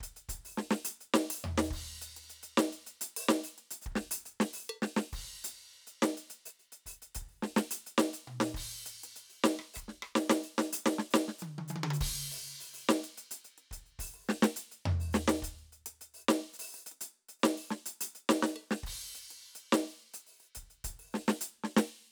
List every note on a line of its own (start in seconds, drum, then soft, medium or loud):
0.01 closed hi-hat medium
0.01 kick soft
0.17 closed hi-hat soft
0.29 closed hi-hat medium
0.29 kick soft
0.37 kick soft
0.46 open hi-hat medium
0.54 open hi-hat soft
0.58 snare medium
0.71 snare loud
0.85 closed hi-hat loud
1.01 closed hi-hat soft
1.14 snare loud
1.31 open hi-hat loud
1.42 floor tom medium
1.42 hi-hat pedal soft
1.58 snare loud
1.65 hi-hat pedal medium
1.71 kick soft
1.71 crash medium
1.77 kick soft
1.80 kick soft
2.02 closed hi-hat medium
2.17 closed hi-hat medium
2.25 closed hi-hat soft
2.30 closed hi-hat soft
2.44 closed hi-hat medium
2.58 snare loud
2.73 closed hi-hat soft
2.87 closed hi-hat medium
3.02 closed hi-hat loud
3.17 open hi-hat loud
3.25 hi-hat pedal soft
3.29 snare loud
3.44 open hi-hat medium
3.58 closed hi-hat medium
3.71 closed hi-hat medium
3.82 hi-hat pedal medium
3.87 kick soft
3.92 kick soft
3.92 snare medium
4.12 open hi-hat loud
4.26 open hi-hat medium
4.41 snare loud
4.54 open hi-hat medium
4.70 percussion loud
4.83 snare medium
4.97 snare loud
5.13 kick soft
5.13 hi-hat pedal soft
5.13 crash medium
5.19 kick soft
5.45 closed hi-hat loud
5.74 closed hi-hat soft
5.88 closed hi-hat soft
6.03 snare loud
6.18 closed hi-hat medium
6.31 closed hi-hat medium
6.46 open hi-hat medium
6.46 hi-hat pedal medium
6.60 open hi-hat soft
6.73 closed hi-hat medium
6.87 open hi-hat medium
6.87 kick soft
7.03 closed hi-hat medium
7.15 closed hi-hat medium
7.15 kick soft
7.22 kick soft
7.29 open hi-hat soft
7.43 snare medium
7.56 snare loud
7.56 hi-hat pedal soft
7.72 closed hi-hat loud
7.87 closed hi-hat soft
7.87 closed hi-hat medium
7.99 snare loud
8.14 open hi-hat medium
8.24 hi-hat pedal soft
8.24 mid tom medium
8.41 snare loud
8.49 hi-hat pedal soft
8.55 kick soft
8.55 crash medium
8.61 kick soft
8.72 closed hi-hat soft
8.86 closed hi-hat medium
9.04 closed hi-hat medium
9.17 closed hi-hat medium
9.30 open hi-hat soft
9.44 snare loud
9.60 cross-stick medium
9.62 cross-stick soft
9.74 open hi-hat medium
9.74 kick soft
9.74 cross-stick medium
9.74 hi-hat pedal medium
9.89 snare soft
10.03 cross-stick medium
10.16 snare loud
10.20 hi-hat pedal soft
10.30 snare loud
10.44 open hi-hat medium
10.59 snare loud
10.73 closed hi-hat loud
10.87 snare loud
10.99 snare medium
11.11 snare loud
11.11 hi-hat pedal medium
11.29 snare medium
11.39 hi-hat pedal medium
11.39 high tom medium
11.59 high tom medium
11.69 hi-hat pedal medium
11.69 high tom medium
11.77 high tom medium
11.84 high tom loud
11.91 hi-hat pedal medium
11.91 high tom medium
12.01 kick medium
12.01 crash loud
12.32 open hi-hat medium
12.48 open hi-hat soft
12.61 open hi-hat medium
12.74 open hi-hat medium
12.89 snare loud
13.04 closed hi-hat medium
13.18 closed hi-hat medium
13.32 closed hi-hat medium
13.45 closed hi-hat soft
13.58 closed hi-hat soft
13.72 closed hi-hat medium
13.72 kick soft
13.86 open hi-hat soft
14.00 open hi-hat medium
14.00 kick soft
14.15 open hi-hat soft
14.27 snare medium
14.27 hi-hat pedal soft
14.43 snare loud
14.57 closed hi-hat medium
14.72 closed hi-hat soft
14.86 floor tom loud
15.01 open hi-hat medium
15.13 snare loud
15.13 hi-hat pedal medium
15.28 snare loud
15.36 hi-hat pedal soft
15.43 closed hi-hat medium
15.43 kick soft
15.48 kick soft
15.59 closed hi-hat soft
15.73 closed hi-hat soft
15.87 closed hi-hat loud
16.02 closed hi-hat medium
16.15 open hi-hat medium
16.22 hi-hat pedal soft
16.29 snare loud
16.54 hi-hat pedal medium
16.60 open hi-hat loud
16.75 open hi-hat medium
16.87 closed hi-hat medium
16.92 closed hi-hat soft
17.02 closed hi-hat loud
17.29 closed hi-hat medium
17.40 hi-hat pedal soft
17.44 snare loud
17.58 open hi-hat medium
17.71 snare medium
17.87 open hi-hat loud
18.01 closed hi-hat loud
18.16 closed hi-hat soft
18.30 snare loud
18.43 snare loud
18.43 hi-hat pedal medium
18.57 percussion medium
18.72 snare medium
18.79 hi-hat pedal soft
18.84 kick soft
18.84 crash medium
18.90 kick soft
19.03 closed hi-hat soft
19.15 closed hi-hat medium
19.31 closed hi-hat medium
19.44 closed hi-hat soft
19.56 closed hi-hat medium
19.73 snare loud
19.88 open hi-hat soft
19.99 closed hi-hat soft
20.14 open hi-hat medium
20.27 open hi-hat soft
20.41 open hi-hat soft
20.56 closed hi-hat medium
20.56 kick soft
20.71 closed hi-hat soft
20.85 open hi-hat medium
20.85 kick soft
21.00 open hi-hat medium
21.15 snare medium
21.29 snare loud
21.42 closed hi-hat loud
21.64 snare medium
21.77 snare loud
21.87 hi-hat pedal soft